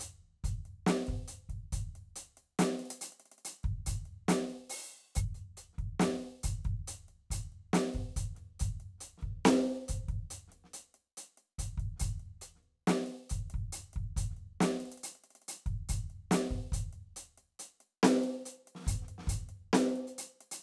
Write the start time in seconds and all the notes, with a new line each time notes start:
0.01 closed hi-hat
0.44 closed hi-hat, kick
0.66 closed hi-hat
0.87 closed hi-hat, snare
1.07 kick, closed hi-hat
1.28 closed hi-hat
1.49 kick, closed hi-hat
1.73 closed hi-hat, kick
1.96 closed hi-hat
2.16 closed hi-hat
2.37 closed hi-hat
2.59 closed hi-hat, snare
2.80 closed hi-hat
2.86 closed hi-hat
2.91 closed hi-hat
3.02 closed hi-hat
3.12 closed hi-hat
3.20 closed hi-hat
3.26 closed hi-hat
3.32 closed hi-hat
3.38 closed hi-hat
3.45 closed hi-hat
3.64 kick, closed hi-hat
3.87 closed hi-hat, kick
4.06 closed hi-hat
4.29 closed hi-hat, snare
4.50 closed hi-hat
4.70 open hi-hat
5.16 open hi-hat, kick, hi-hat pedal
5.35 closed hi-hat
5.57 closed hi-hat
5.73 snare
5.79 kick, closed hi-hat
6.00 closed hi-hat, snare
6.19 closed hi-hat
6.44 closed hi-hat, kick
6.65 kick, closed hi-hat
6.88 closed hi-hat
7.09 closed hi-hat
7.31 closed hi-hat, kick
7.52 closed hi-hat
7.74 closed hi-hat, snare
7.94 kick, closed hi-hat
8.17 closed hi-hat, kick
8.35 snare, closed hi-hat
8.60 closed hi-hat, kick
8.80 closed hi-hat
8.99 closed hi-hat, snare
9.18 snare
9.22 kick, closed hi-hat
9.45 closed hi-hat, snare
9.51 snare
9.89 closed hi-hat, kick
10.09 kick, closed hi-hat
10.31 closed hi-hat
10.48 snare
10.52 closed hi-hat
10.64 snare
10.74 closed hi-hat
10.95 closed hi-hat
11.17 closed hi-hat
11.38 closed hi-hat
11.59 closed hi-hat, kick
11.78 kick, closed hi-hat
11.97 closed hi-hat, snare
12.01 kick
12.20 closed hi-hat
12.42 closed hi-hat
12.56 snare
12.63 closed hi-hat
12.88 closed hi-hat, snare
13.07 closed hi-hat
13.30 closed hi-hat, kick
13.50 kick, closed hi-hat
13.73 closed hi-hat
13.94 kick, closed hi-hat
14.17 closed hi-hat, kick
14.31 snare
14.37 closed hi-hat
14.61 closed hi-hat, snare
14.81 closed hi-hat
14.86 closed hi-hat
14.92 closed hi-hat
14.98 closed hi-hat
15.04 closed hi-hat
15.16 closed hi-hat
15.24 closed hi-hat
15.31 closed hi-hat
15.36 closed hi-hat
15.42 closed hi-hat
15.49 closed hi-hat
15.66 kick, closed hi-hat
15.89 closed hi-hat, kick
16.10 closed hi-hat
16.31 closed hi-hat, snare
16.51 kick, closed hi-hat
16.72 closed hi-hat, kick
16.93 closed hi-hat
17.17 closed hi-hat
17.38 closed hi-hat
17.60 closed hi-hat
17.81 closed hi-hat
18.03 closed hi-hat, snare
18.24 closed hi-hat
18.41 snare
18.46 closed hi-hat
18.68 closed hi-hat
18.75 snare
18.80 snare
18.83 snare
18.87 closed hi-hat, kick, snare
19.02 snare
19.09 closed hi-hat
19.18 snare
19.22 snare
19.25 snare
19.27 closed hi-hat, kick, snare
19.49 closed hi-hat
19.73 closed hi-hat, snare
19.96 closed hi-hat
20.08 closed hi-hat
20.19 closed hi-hat
20.41 closed hi-hat
20.52 closed hi-hat